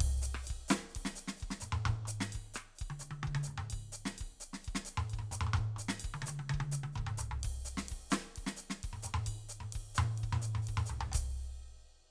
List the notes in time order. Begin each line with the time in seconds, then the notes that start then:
0.01 kick, ride
0.10 kick
0.22 hi-hat pedal
0.27 ride
0.35 cross-stick
0.44 hi-hat pedal, ride bell
0.51 kick
0.69 snare, hi-hat pedal
0.90 hi-hat pedal
0.96 kick, ride
1.06 snare
1.16 hi-hat pedal, ride
1.28 snare
1.37 hi-hat pedal, ride bell
1.43 kick
1.51 snare
1.61 hi-hat pedal, mid tom
1.73 mid tom
1.86 kick, mid tom
2.06 hi-hat pedal, mid tom
2.21 snare
2.29 hi-hat pedal, ride bell
2.35 kick
2.54 cross-stick, hi-hat pedal
2.76 hi-hat pedal, ride bell
2.82 kick
2.91 high tom
3.00 hi-hat pedal, high tom
3.11 high tom
3.24 kick, high tom
3.34 kick, high tom
3.44 hi-hat pedal
3.48 mid tom
3.58 mid tom
3.71 kick, ride bell
3.81 kick
3.93 hi-hat pedal, ride
4.06 snare
4.15 hi-hat pedal, ride bell
4.21 kick
4.41 hi-hat pedal, ride
4.54 snare
4.62 hi-hat pedal, ride bell
4.68 kick
4.75 snare
4.86 hi-hat pedal, ride
4.98 mid tom
5.10 kick, ride bell
5.19 mid tom
5.32 hi-hat pedal, mid tom
5.41 mid tom
5.47 mid tom
5.54 kick, mid tom
5.77 hi-hat pedal, mid tom
5.89 snare
6.00 hi-hat pedal, ride bell
6.05 kick
6.13 kick, high tom
6.22 high tom
6.27 hi-hat pedal, high tom
6.40 high tom
6.50 high tom
6.54 kick
6.61 kick, high tom
6.72 hi-hat pedal, high tom
6.84 high tom
6.93 hi-hat pedal, mid tom
6.98 kick
7.06 kick, mid tom
7.18 floor tom, hi-hat pedal
7.32 floor tom
7.40 hi-hat pedal
7.44 kick, ride
7.54 kick
7.65 hi-hat pedal, ride
7.78 snare
7.86 hi-hat pedal, ride
7.92 kick
8.11 snare, hi-hat pedal
8.37 kick, ride
8.47 snare
8.57 hi-hat pedal, ride
8.71 snare
8.78 hi-hat pedal
8.84 kick, ride
8.92 kick, mid tom
9.03 hi-hat pedal, mid tom
9.15 mid tom
9.24 kick, hi-hat pedal, ride bell
9.49 hi-hat pedal, ride
9.61 mid tom
9.73 kick, ride
9.84 kick
9.95 hi-hat pedal, mid tom
10.18 ride
10.24 kick
10.30 kick, mid tom
10.42 hi-hat pedal, ride
10.55 mid tom
10.63 hi-hat pedal
10.68 kick, ride
10.78 mid tom
10.86 floor tom, hi-hat pedal
11.01 floor tom
11.12 kick, hi-hat pedal, ride, floor tom
11.25 kick
11.39 hi-hat pedal